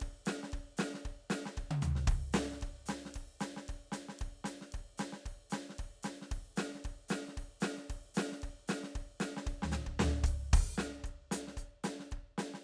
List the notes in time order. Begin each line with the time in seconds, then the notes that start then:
0.01 kick, ride
0.26 snare, hi-hat pedal, ride
0.44 snare
0.53 kick, ride
0.78 snare, hi-hat pedal, ride
0.95 snare
1.06 kick, ride
1.31 snare, hi-hat pedal, ride
1.46 snare
1.58 kick, ride
1.71 high tom
1.83 floor tom, hi-hat pedal
1.96 snare
2.08 kick, ride
2.33 snare, hi-hat pedal, ride
2.53 snare
2.62 kick, ride
2.87 snare, hi-hat pedal, ride
3.06 snare
3.15 kick, ride
3.41 snare, hi-hat pedal, ride
3.57 snare
3.69 kick, ride
3.93 snare, hi-hat pedal, ride
4.09 snare
4.20 kick, ride
4.45 snare, hi-hat pedal, ride
4.62 snare
4.73 kick, ride
4.98 snare, hi-hat pedal, ride
5.13 snare
5.26 kick, ride
5.51 snare, hi-hat pedal, ride
5.70 snare
5.79 kick, ride
6.03 snare, hi-hat pedal, ride
6.22 snare
6.32 kick, ride
6.57 snare, hi-hat pedal, ride
6.75 snare
6.85 kick, ride
7.09 snare, hi-hat pedal, ride
7.29 snare
7.38 kick, ride
7.61 snare, hi-hat pedal, ride
7.78 snare
7.90 kick, ride
8.15 snare, hi-hat pedal, ride
8.32 snare
8.43 kick, ride
8.68 snare, hi-hat pedal, ride
8.84 snare
8.96 kick, ride
9.21 snare, hi-hat pedal, ride
9.37 snare
9.47 kick, ride
9.63 snare, floor tom
9.72 snare, floor tom, hi-hat pedal
9.87 kick
10.00 snare, floor tom
10.24 kick, hi-hat pedal, ride
10.54 open hi-hat, kick
10.78 open hi-hat, snare, hi-hat pedal
10.99 snare
11.04 kick, closed hi-hat
11.32 closed hi-hat, snare
11.48 snare
11.58 closed hi-hat, kick
11.84 closed hi-hat, snare
12.00 snare
12.12 kick, closed hi-hat
12.38 closed hi-hat, snare
12.54 snare